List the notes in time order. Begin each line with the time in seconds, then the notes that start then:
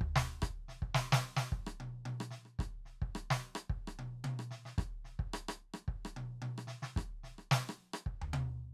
0.01 kick
0.16 snare
0.42 kick, cross-stick
0.68 snare
0.82 kick
0.94 snare
1.12 snare
1.36 snare
1.52 kick
1.66 cross-stick
1.80 high tom
2.05 high tom
2.20 cross-stick
2.31 snare
2.45 cross-stick
2.59 kick, cross-stick
2.85 snare
3.02 kick
3.15 cross-stick
3.30 snare
3.55 cross-stick
3.70 kick
3.87 cross-stick
3.99 high tom
4.24 high tom
4.39 cross-stick
4.51 snare
4.65 snare
4.78 kick, cross-stick
5.04 snare
5.19 kick
5.33 cross-stick
5.48 cross-stick
5.74 cross-stick
5.88 kick
6.05 cross-stick
6.16 high tom
6.42 high tom
6.58 cross-stick
6.67 snare
6.82 snare
6.96 kick, cross-stick
7.23 snare
7.38 cross-stick
7.51 snare
7.69 cross-stick
7.93 cross-stick
8.06 kick
8.21 floor tom
8.33 high tom